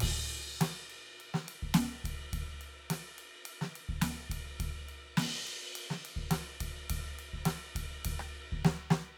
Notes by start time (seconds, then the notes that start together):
0.01 kick, ride, crash
0.31 ride
0.61 snare, ride
0.90 ride
1.21 ride
1.35 snare
1.49 ride
1.63 kick
1.75 snare, ride
2.05 kick, ride
2.33 kick, ride
2.61 ride
2.91 snare, ride
3.19 ride
3.46 ride
3.62 snare
3.76 ride
3.89 kick
4.02 snare, ride
4.30 kick, ride
4.60 kick, ride
4.89 ride
5.18 snare, ride
5.47 ride
5.76 ride
5.91 snare
6.05 ride
6.17 kick
6.31 snare, ride
6.61 kick, ride
6.90 kick, ride
7.19 ride
7.34 kick
7.46 snare, ride
7.76 kick, ride
8.05 kick, ride
8.20 cross-stick
8.53 kick
8.57 kick
8.65 snare
8.91 snare